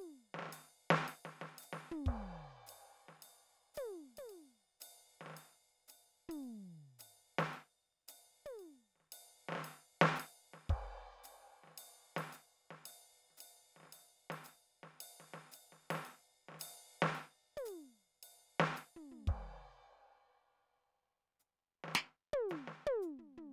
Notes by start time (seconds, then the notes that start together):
0.02 ride
0.35 snare
0.39 snare
0.43 snare
0.46 snare
0.49 snare, hi-hat pedal, ride
0.91 snare
1.08 ride
1.25 snare
1.42 snare
1.59 hi-hat pedal, ride
1.73 snare
1.91 floor tom
2.07 kick, crash
2.67 hi-hat pedal, ride
3.09 snare
3.23 ride
3.75 hi-hat pedal, high tom, ride
4.18 high tom, ride
4.30 ride
4.81 hi-hat pedal, ride
5.21 snare
5.26 snare
5.30 snare
5.34 snare, ride
5.88 hi-hat pedal, ride
6.29 floor tom, ride
6.44 ride
6.99 hi-hat pedal, ride
7.39 snare, ride
7.53 ride
8.08 hi-hat pedal, ride
8.46 high tom, ride
8.59 ride
8.96 snare
9.01 snare
9.12 hi-hat pedal, ride
9.49 snare
9.53 snare
9.56 snare
9.58 snare
9.61 snare, ride
10.02 snare
10.16 hi-hat pedal
10.20 ride
10.54 snare
10.70 kick, crash
11.24 hi-hat pedal, ride
11.64 snare
11.68 snare
11.71 snare
11.78 ride
12.17 snare, ride
12.33 hi-hat pedal, ride
12.71 snare
12.86 ride
13.31 snare
13.38 hi-hat pedal, ride
13.77 snare
13.81 snare
13.84 snare
13.86 snare
13.93 ride
14.30 snare, ride
14.44 hi-hat pedal, ride
14.84 snare
15.01 ride
15.20 snare
15.34 snare
15.52 hi-hat pedal, ride
15.73 snare
15.91 snare, ride
15.96 snare
16.05 ride
16.49 snare
16.52 snare
16.55 snare
16.60 hi-hat pedal, ride
17.02 snare
17.09 snare
17.15 ride
17.57 high tom, ride
17.66 hi-hat pedal, ride
18.23 ride
18.60 snare
18.76 hi-hat pedal, ride
18.96 floor tom
19.11 floor tom
19.28 kick, crash
21.40 hi-hat pedal
21.84 snare
21.89 snare
21.92 snare, hi-hat pedal
21.95 snare
22.33 high tom
22.49 snare, hi-hat pedal
22.68 snare
22.87 high tom
23.03 hi-hat pedal
23.19 floor tom
23.37 floor tom